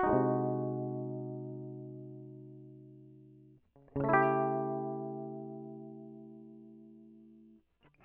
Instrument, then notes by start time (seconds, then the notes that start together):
electric guitar
0.00 D#4 F#4
0.07 G#3
0.15 C3
3.98 C#3
4.05 A3
4.09 E4
4.14 G4